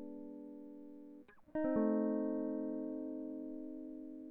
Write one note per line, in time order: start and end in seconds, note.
1.55 4.31 D#4
1.65 4.31 C4
1.77 4.31 A3